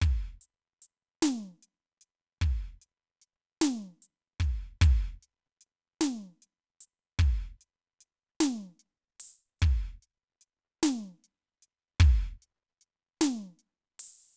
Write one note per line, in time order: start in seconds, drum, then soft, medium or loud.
0.01 closed hi-hat medium
0.01 kick medium
0.41 closed hi-hat medium
0.82 closed hi-hat medium
1.22 closed hi-hat medium
1.22 snare loud
1.62 closed hi-hat medium
2.01 closed hi-hat medium
2.41 kick medium
2.41 closed hi-hat medium
2.81 closed hi-hat medium
3.21 closed hi-hat medium
3.61 closed hi-hat medium
3.61 snare loud
3.77 snare soft
4.02 closed hi-hat medium
4.40 kick medium
4.40 closed hi-hat medium
4.81 closed hi-hat medium
4.81 kick loud
5.23 closed hi-hat medium
5.61 closed hi-hat medium
6.01 snare loud
6.01 closed hi-hat medium
6.42 closed hi-hat medium
6.80 closed hi-hat medium
7.19 kick loud
7.19 closed hi-hat medium
7.61 closed hi-hat medium
8.01 closed hi-hat medium
8.40 closed hi-hat medium
8.40 snare loud
8.79 closed hi-hat medium
9.20 open hi-hat loud
9.59 kick medium
9.59 hi-hat pedal soft
9.63 closed hi-hat soft
10.02 closed hi-hat soft
10.41 closed hi-hat medium
10.83 snare loud
10.83 closed hi-hat medium
11.24 closed hi-hat medium
11.62 closed hi-hat medium
12.00 kick loud
12.00 closed hi-hat medium
12.42 closed hi-hat medium
12.81 closed hi-hat medium
13.21 closed hi-hat medium
13.21 snare loud
13.59 closed hi-hat soft
13.99 open hi-hat loud